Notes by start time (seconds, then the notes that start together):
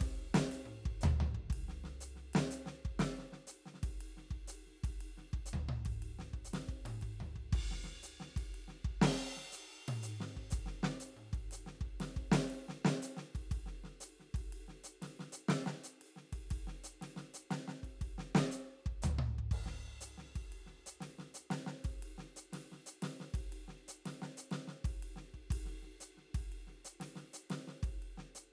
0.01 kick, ride
0.35 snare, ride
0.52 hi-hat pedal, ride
0.66 high tom
0.86 kick
1.01 floor tom, hi-hat pedal
1.20 floor tom
1.35 kick
1.50 kick, ride
1.69 snare
1.84 snare
2.01 hi-hat pedal, ride
2.16 snare
2.34 snare, ride
2.51 hi-hat pedal, ride
2.66 snare
2.85 kick
3.00 snare, ride
3.19 snare
3.32 snare
3.47 hi-hat pedal
3.52 ride
3.66 snare
3.74 snare
3.83 kick, ride
4.01 ride
4.17 snare
4.31 kick
4.48 hi-hat pedal, ride
4.66 snare
4.84 kick, ride
5.01 ride
5.18 snare
5.33 kick
5.46 hi-hat pedal
5.53 floor tom
5.69 high tom
5.85 kick, ride
5.91 hi-hat pedal
6.02 ride
6.19 snare
6.34 kick
6.45 hi-hat pedal
6.54 snare, ride
6.69 kick
6.86 high tom, ride
7.02 kick, ride
7.20 floor tom
7.36 kick
7.53 kick, crash
7.71 snare
7.84 snare
8.03 hi-hat pedal, ride
8.20 snare
8.36 kick, ride
8.54 ride
8.68 snare
8.85 kick
9.02 snare, crash
9.37 snare
9.52 hi-hat pedal, ride
9.88 high tom, ride
10.03 hi-hat pedal, ride
10.21 snare
10.37 kick
10.51 kick, hi-hat pedal, ride
10.66 snare
10.83 snare
11.00 hi-hat pedal, ride
11.17 high tom
11.33 kick, ride
11.51 hi-hat pedal, ride
11.67 snare
11.81 kick
12.00 snare, ride
12.17 kick
12.32 snare, ride
12.50 ride
12.69 snare
12.85 snare
13.02 hi-hat pedal, ride
13.17 snare
13.35 kick, ride
13.51 kick, ride
13.66 snare
13.84 snare
14.01 hi-hat pedal, ride
14.20 snare
14.34 kick, ride
14.53 ride
14.68 snare
14.84 hi-hat pedal
15.02 snare, ride
15.19 snare
15.32 hi-hat pedal
15.49 snare, ride
15.66 snare
15.84 hi-hat pedal
16.01 hi-hat pedal, ride
16.16 snare
16.33 kick, ride
16.51 kick, ride
16.67 snare
16.84 hi-hat pedal
17.02 snare, ride
17.17 snare
17.34 hi-hat pedal
17.51 snare, ride
17.68 snare
17.83 kick, ride
18.01 kick, ride
18.18 snare
18.35 snare
18.52 hi-hat pedal, ride
18.86 kick
19.02 floor tom, hi-hat pedal
19.19 high tom
19.39 kick
19.51 kick, crash
19.66 snare
19.86 snare
20.01 hi-hat pedal, ride
20.18 snare
20.36 kick, ride
20.52 ride
20.67 snare
20.86 hi-hat pedal
21.01 snare, ride
21.19 snare
21.34 hi-hat pedal
21.51 snare, ride
21.67 snare
21.84 kick, ride
22.03 ride
22.18 snare
22.36 hi-hat pedal
22.53 snare, ride
22.72 snare
22.86 hi-hat pedal
23.02 snare, ride
23.20 snare
23.34 kick, ride
23.52 ride
23.68 snare
23.88 hi-hat pedal
24.06 snare, ride
24.22 snare
24.37 hi-hat pedal
24.51 snare, ride
24.68 snare
24.85 kick, ride
25.03 ride
25.16 snare
25.34 kick
25.51 kick, ride
25.66 kick, snare
25.83 snare
26.01 hi-hat pedal, ride
26.17 snare
26.35 kick, ride
26.52 ride
26.67 snare
26.85 hi-hat pedal
27.00 snare, ride
27.05 hi-hat pedal
27.16 snare
27.34 hi-hat pedal
27.50 snare, ride
27.68 snare
27.83 kick, ride
28.02 ride
28.18 snare
28.35 hi-hat pedal